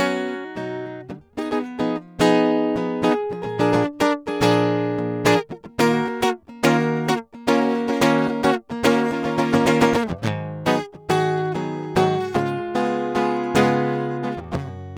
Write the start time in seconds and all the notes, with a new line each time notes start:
0.00 F#3 B3 C#4 F#4
0.58 B2 F#3 D#4 F#4
0.88 F#3
1.11 F#3
1.39 B3 D#4 G#4
1.48 F3
1.54 B3 D#4 G#4
1.81 F3 B3 D#4 G#4
2.00 F3
2.22 F3 B3 D#4 G#4
2.78 F3 B3 D#4
3.04 F3 B3 D#4 G#4
3.33 F3 G#4 A#4
3.44 A#2 F3 G#4 A#4
3.60 A#2 F3 D4 G#4 A#4
3.74 A#2 F3 D4 G#4 A#4
4.02 D4 G#4 A#4
4.29 F3 D4 G#4 A#4
4.43 A#2 F3 D4 G#4 A#4
5.00 A#2 F3
5.27 A#2 F3 D4 G#4 A#4
5.54 A#4
5.66 A#4
5.81 D#3 A#3 C4 F4 A#4
5.94 F#4
6.08 A#3 F#4 A#4
6.24 A#3 C#4 F#4 A#4
6.51 A#3
6.65 D#3 A#3 C#4 F4 A#4
6.79 F#4
7.11 A#3 C#4 F#4 A#4
7.36 A#3
7.49 D#3 A#3 C#4 F4 A#4
7.62 F#4
7.73 A#4
7.77 F#4
7.90 D#3 A#3 C#4 F4 A#4
8.03 D#3 A#3 C#4 F4 A#4
8.18 F#4
8.26 D#3 C#4 F#4
8.30 A#3 A#4
8.46 D#3 A#3 C#4 F#4 A#4
8.71 D#3 A#3 A#4
8.86 D#3 A#3 C#4 F4 A#4
8.97 F#4
9.10 A#3 C#4
9.14 F4 A#4
9.25 D#3 A#3 C#4 F4 A#4
9.39 D#3 A#3 C#4 F4 A#4
9.54 D#3 A#3 C#4 F4 A#4
9.68 D#3 A#3 C#4 F4 A#4
9.82 D#3 A#3 C#4 F4 A#4
9.96 D#3 A#3 C#4 A#4
10.10 G4
10.26 G#2 D#3 F#3
10.68 D#3 F#3 B3 D#4 G#4
10.97 D#3
11.11 G#2 D#3 F#3 B3 F#4 G#4
11.55 D#3 F#3 B3 D#4 G#4
11.98 G#2 D#3 F#3 B3 F#4 G#4
12.37 G#2 C#3 G#3 B3 F4 G#4
12.77 C#3 G#3 B3 F4 G#4
13.17 C#3 G#3 B3 F4 G#4
13.57 C#3 G#3 B3 F4 G#4
14.25 G#3 B3 F4 G#4
14.39 E2 F#4
14.54 F#2 C#3 A#3 F#4